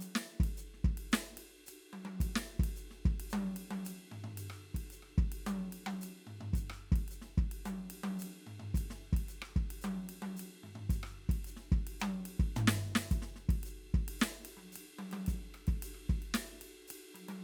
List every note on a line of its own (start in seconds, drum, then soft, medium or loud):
0.01 hi-hat pedal medium
0.01 ride medium
0.16 snare medium
0.41 kick medium
0.41 ride medium
0.58 hi-hat pedal medium
0.74 snare soft
0.85 kick medium
0.98 ride medium
1.12 snare loud
1.12 hi-hat pedal medium
1.38 ride medium
1.67 hi-hat pedal medium
1.67 ride medium
1.94 high tom medium
2.06 high tom medium
2.21 kick medium
2.21 hi-hat pedal medium
2.21 ride medium
2.36 snare medium
2.60 kick medium
2.64 ride medium
2.77 hi-hat pedal medium
2.77 ride soft
2.91 snare soft
3.06 kick medium
3.20 ride medium
3.31 hi-hat pedal medium
3.31 high tom loud
3.57 ride medium
3.71 high tom loud
3.86 hi-hat pedal medium
3.86 ride medium
4.12 floor tom medium
4.25 floor tom medium
4.38 hi-hat pedal medium
4.38 ride medium
4.51 cross-stick medium
4.75 kick soft
4.75 ride medium
4.91 hi-hat pedal medium
4.91 ride soft
5.03 cross-stick soft
5.19 kick medium
5.32 ride medium
5.47 hi-hat pedal medium
5.47 high tom loud
5.73 ride medium
5.87 high tom medium
6.02 hi-hat pedal medium
6.02 ride medium
6.27 floor tom medium
6.41 floor tom medium
6.54 kick medium
6.54 hi-hat pedal medium
6.54 ride medium
6.70 cross-stick medium
6.92 kick medium
6.92 ride medium
7.09 hi-hat pedal medium
7.09 ride soft
7.22 snare soft
7.38 kick medium
7.52 ride medium
7.66 hi-hat pedal medium
7.66 high tom medium
7.91 ride medium
8.04 high tom loud
8.20 hi-hat pedal medium
8.20 ride medium
8.47 floor tom medium
8.60 floor tom medium
8.75 kick medium
8.75 hi-hat pedal medium
8.75 ride medium
8.91 snare soft
9.13 kick medium
9.13 ride medium
9.29 hi-hat pedal medium
9.29 ride soft
9.42 cross-stick medium
9.57 kick medium
9.71 ride medium
9.82 hi-hat pedal medium
9.82 high tom loud
10.10 ride medium
10.23 high tom medium
10.37 hi-hat pedal medium
10.37 ride medium
10.64 floor tom soft
10.76 floor tom medium
10.90 kick medium
10.90 hi-hat pedal medium
10.90 ride medium
11.04 cross-stick medium
11.30 kick medium
11.30 ride medium
11.45 hi-hat pedal medium
11.45 ride medium
11.57 snare soft
11.72 kick medium
11.87 ride medium
12.00 hi-hat pedal medium
12.00 high tom loud
12.26 ride medium
12.40 kick medium
12.56 floor tom loud
12.56 hi-hat pedal medium
12.68 snare loud
12.81 hi-hat pedal soft
12.96 snare loud
13.11 kick medium
13.11 hi-hat pedal medium
13.11 ride medium
13.23 snare soft
13.36 snare soft
13.50 kick medium
13.50 ride medium
13.64 hi-hat pedal medium
13.64 ride medium
13.95 kick medium
14.09 ride medium
14.20 snare loud
14.20 hi-hat pedal medium
14.46 ride medium
14.58 high tom soft
14.73 hi-hat pedal medium
14.73 ride medium
14.99 high tom medium
15.12 high tom medium
15.12 ride soft
15.27 kick medium
15.27 hi-hat pedal medium
15.27 ride medium
15.55 cross-stick soft
15.55 ride soft
15.68 kick medium
15.68 ride soft
15.83 hi-hat pedal medium
15.83 ride medium
15.95 cross-stick soft
16.10 kick medium
16.23 ride soft
16.35 snare loud
16.35 hi-hat pedal medium
16.35 ride medium
16.62 ride medium
16.88 hi-hat pedal medium
16.88 ride medium
17.15 high tom soft
17.15 ride soft
17.29 high tom medium
17.29 ride soft